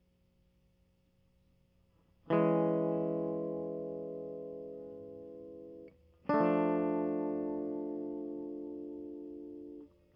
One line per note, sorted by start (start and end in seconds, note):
2.31 5.93 E3
2.31 5.91 G#3
6.30 9.89 D4
6.35 9.88 A3
6.41 9.85 F3